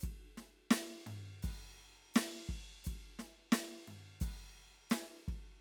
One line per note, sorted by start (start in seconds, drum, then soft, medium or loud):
0.01 kick soft
0.01 hi-hat pedal medium
0.01 ride soft
0.38 snare soft
0.38 ride soft
0.72 snare loud
0.72 hi-hat pedal medium
0.72 ride soft
1.07 floor tom medium
1.07 ride soft
1.43 kick soft
1.43 hi-hat pedal medium
1.43 crash soft
2.15 snare loud
2.15 hi-hat pedal medium
2.15 ride medium
2.50 kick soft
2.85 kick soft
2.85 hi-hat pedal medium
2.85 ride soft
3.20 snare soft
3.20 ride soft
3.53 snare loud
3.53 hi-hat pedal medium
3.53 ride soft
3.88 floor tom soft
3.88 ride soft
4.21 kick soft
4.21 hi-hat pedal medium
4.21 crash soft
4.91 snare loud
4.91 hi-hat pedal medium
4.91 ride medium
5.29 kick soft
5.29 ride soft